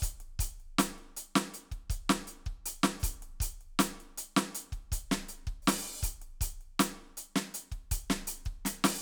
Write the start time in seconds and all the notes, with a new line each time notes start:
0.01 closed hi-hat, kick, hi-hat pedal
0.20 closed hi-hat
0.39 closed hi-hat, kick
0.60 closed hi-hat
0.79 closed hi-hat, snare
0.98 closed hi-hat
1.17 closed hi-hat
1.36 snare
1.54 closed hi-hat
1.72 kick, closed hi-hat
1.90 closed hi-hat, kick
2.10 snare
2.27 closed hi-hat
2.46 kick, closed hi-hat
2.66 open hi-hat
2.84 snare
3.00 closed hi-hat, kick, hi-hat pedal
3.23 closed hi-hat
3.40 closed hi-hat, kick
3.61 closed hi-hat
3.79 closed hi-hat, snare
4.00 closed hi-hat
4.18 closed hi-hat
4.37 snare, closed hi-hat
4.55 closed hi-hat
4.73 kick, closed hi-hat
4.92 closed hi-hat, kick
5.12 snare
5.29 closed hi-hat
5.47 kick, closed hi-hat
5.62 hi-hat pedal
5.68 open hi-hat, snare
6.02 closed hi-hat, kick, hi-hat pedal
6.22 closed hi-hat
6.41 closed hi-hat, kick
6.61 closed hi-hat
6.80 closed hi-hat, snare
7.17 closed hi-hat
7.36 snare, closed hi-hat
7.54 closed hi-hat
7.72 kick, closed hi-hat
7.91 closed hi-hat, kick
8.10 snare, closed hi-hat
8.27 closed hi-hat
8.46 kick, closed hi-hat
8.65 closed hi-hat, snare
8.84 open hi-hat, snare